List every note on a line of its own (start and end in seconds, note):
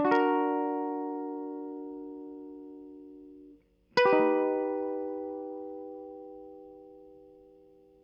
0.00 3.59 D4
0.05 3.55 F#4
0.12 3.62 A#4
3.98 8.04 B4
4.06 8.04 G4
4.13 8.04 D#4